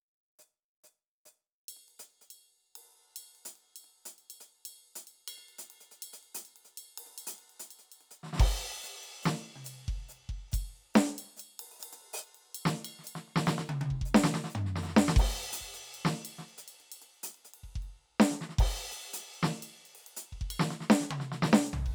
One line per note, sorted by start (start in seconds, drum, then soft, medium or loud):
0.39 hi-hat pedal medium
0.84 hi-hat pedal soft
1.25 hi-hat pedal medium
1.68 ride bell medium
1.76 closed hi-hat soft
1.88 ride soft
1.99 closed hi-hat medium
2.10 ride soft
2.21 closed hi-hat soft
2.30 ride bell medium
2.75 ride medium
3.16 ride bell medium
3.35 ride soft
3.45 closed hi-hat loud
3.55 ride soft
3.76 ride bell medium
3.84 closed hi-hat soft
4.05 closed hi-hat medium
4.18 ride bell soft
4.30 ride bell medium
4.40 closed hi-hat medium
4.58 closed hi-hat soft
4.65 ride bell medium
4.75 closed hi-hat soft
4.95 closed hi-hat loud
5.07 ride bell soft
5.15 closed hi-hat soft
5.28 ride bell loud
5.37 closed hi-hat soft
5.48 ride soft
5.58 closed hi-hat loud
5.70 ride medium
5.80 closed hi-hat soft
5.91 closed hi-hat soft
6.02 ride bell medium
6.13 closed hi-hat medium
6.23 ride soft
6.35 closed hi-hat loud
6.45 ride bell soft
6.56 ride medium
6.65 closed hi-hat soft
6.77 ride bell medium
6.98 ride loud
7.06 closed hi-hat soft
7.18 ride bell medium
7.27 closed hi-hat loud
7.38 ride soft
7.49 ride soft
7.60 closed hi-hat loud
7.71 ride bell medium
7.79 closed hi-hat soft
7.92 ride bell soft
8.01 closed hi-hat soft
8.11 closed hi-hat medium
8.23 snare soft
8.26 snare soft
8.33 snare medium
8.36 kick loud
8.36 snare medium
8.36 crash loud
8.83 hi-hat pedal medium
9.03 ride medium
9.23 snare loud
9.23 hi-hat pedal medium
9.55 high tom medium
9.64 hi-hat pedal medium
9.64 ride bell medium
9.88 kick medium
10.09 hi-hat pedal medium
10.09 ride soft
10.09 floor tom soft
10.29 kick medium
10.52 kick medium
10.52 hi-hat pedal medium
10.52 ride bell medium
10.75 ride soft
10.94 snare loud
10.94 hi-hat pedal medium
11.18 ride bell medium
11.37 hi-hat pedal medium
11.37 ride bell medium
11.59 ride loud
11.71 open hi-hat soft
11.79 hi-hat pedal medium
11.79 ride loud
11.93 closed hi-hat medium
12.01 crash soft
12.13 open hi-hat loud
12.19 hi-hat pedal medium
12.24 ride soft
12.35 ride medium
12.54 ride bell medium
12.65 snare loud
12.65 hi-hat pedal medium
12.85 ride bell loud
12.99 snare soft
13.04 hi-hat pedal medium
13.04 ride bell medium
13.15 snare medium
13.28 snare soft
13.36 snare loud
13.46 snare loud
13.46 hi-hat pedal medium
13.58 snare medium
13.65 hi-hat pedal soft
13.65 high tom loud
13.81 high tom loud
13.90 kick soft
14.01 kick medium
14.01 hi-hat pedal medium
14.14 snare loud
14.24 snare loud
14.34 snare medium
14.44 snare medium
14.50 hi-hat pedal medium
14.55 mid tom loud
14.65 snare soft
14.76 snare medium
14.82 snare medium
14.82 hi-hat pedal soft
14.87 snare medium
14.91 snare soft
14.96 snare loud
15.08 snare loud
15.16 kick loud
15.16 crash loud
15.23 hi-hat pedal medium
15.30 closed hi-hat medium
15.43 ride bell soft
15.53 closed hi-hat loud
15.61 kick soft
15.61 ride bell soft
15.74 closed hi-hat medium
15.84 ride soft
15.94 ride bell medium
16.05 snare loud
16.25 ride bell medium
16.38 snare soft
16.48 ride soft
16.58 closed hi-hat medium
16.68 ride bell medium
16.80 closed hi-hat soft
16.92 ride bell medium
17.02 closed hi-hat medium
17.14 ride soft
17.23 closed hi-hat loud
17.34 ride soft
17.45 closed hi-hat medium
17.54 ride medium
17.63 kick soft
17.75 kick medium
17.82 mid tom soft
17.82 ride soft
17.82 floor tom soft
18.20 snare loud
18.20 hi-hat pedal medium
18.31 snare soft
18.41 snare medium
18.49 snare soft
18.58 kick loud
18.58 hi-hat pedal soft
18.58 crash loud
18.91 closed hi-hat medium
19.02 ride soft
19.13 closed hi-hat loud
19.24 ride soft
19.34 ride soft
19.43 snare loud
19.62 ride bell medium
19.85 ride bell soft
19.95 open hi-hat medium
20.06 ride medium
20.16 closed hi-hat loud
20.32 kick soft
20.41 kick medium
20.50 ride bell loud
20.59 snare loud
20.70 snare medium
20.80 snare medium
20.90 snare loud
21.00 snare soft
21.11 high tom loud
21.20 snare medium
21.32 snare medium
21.42 snare loud
21.53 snare loud
21.66 crash soft
21.73 floor tom loud
21.86 kick medium
21.86 crash soft